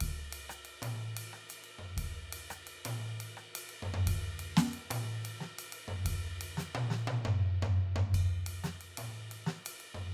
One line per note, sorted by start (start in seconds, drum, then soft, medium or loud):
0.01 kick medium
0.01 ride loud
0.33 ride loud
0.50 cross-stick medium
0.50 hi-hat pedal medium
0.65 ride medium
0.83 mid tom loud
0.83 ride loud
1.17 ride loud
1.34 cross-stick medium
1.50 hi-hat pedal medium
1.50 ride medium
1.65 ride medium
1.79 floor tom medium
1.98 kick medium
1.98 ride loud
2.33 ride loud
2.51 cross-stick medium
2.51 hi-hat pedal medium
2.67 ride medium
2.86 mid tom loud
2.86 ride loud
3.21 ride medium
3.38 cross-stick medium
3.56 hi-hat pedal medium
3.56 ride loud
3.70 ride medium
3.83 floor tom loud
3.94 floor tom loud
4.07 kick medium
4.07 ride loud
4.40 ride medium
4.57 snare loud
4.57 hi-hat pedal medium
4.74 ride medium
4.91 mid tom loud
4.91 ride loud
5.26 ride loud
5.41 snare medium
5.59 hi-hat pedal medium
5.59 ride loud
5.73 ride medium
5.88 floor tom medium
6.06 kick medium
6.06 ride loud
6.42 ride loud
6.58 snare medium
6.58 hi-hat pedal medium
6.75 mid tom loud
6.91 snare medium
7.08 mid tom loud
7.26 floor tom loud
7.63 floor tom loud
7.63 hi-hat pedal soft
7.96 floor tom loud
8.14 kick medium
8.14 ride bell loud
8.47 ride loud
8.64 snare medium
8.64 hi-hat pedal medium
8.81 ride medium
8.98 mid tom medium
8.98 ride loud
9.32 ride medium
9.47 snare medium
9.66 hi-hat pedal medium
9.66 ride loud
9.81 ride medium
9.95 floor tom medium